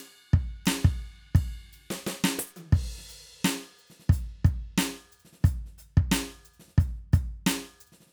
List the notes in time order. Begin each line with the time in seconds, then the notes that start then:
0.01 ride bell
0.34 kick, snare
0.66 snare, ride bell
0.85 kick
1.36 kick, ride bell
1.73 ride
1.91 snare
2.07 snare, hi-hat pedal
2.25 snare
2.39 high tom
2.57 high tom
2.73 kick, crash
2.99 snare
3.09 closed hi-hat
3.45 open hi-hat, snare, hi-hat pedal
3.79 closed hi-hat
3.88 snare, closed hi-hat
4.00 snare
4.09 closed hi-hat, kick, snare
4.15 snare
4.21 snare
4.26 snare
4.45 kick, closed hi-hat
4.78 closed hi-hat, snare
4.99 hi-hat pedal
5.12 closed hi-hat
5.20 closed hi-hat
5.26 snare
5.33 snare
5.41 closed hi-hat, kick, snare
5.49 snare
5.66 snare
5.73 snare
5.78 closed hi-hat
5.98 kick
6.12 open hi-hat, snare
6.27 hi-hat pedal
6.45 closed hi-hat
6.54 closed hi-hat
6.60 snare
6.69 snare
6.79 closed hi-hat, kick
6.87 snare
6.94 snare
7.13 closed hi-hat, kick
7.47 closed hi-hat, snare
7.67 hi-hat pedal
7.81 closed hi-hat
7.87 closed hi-hat
7.93 snare
8.01 snare
8.08 snare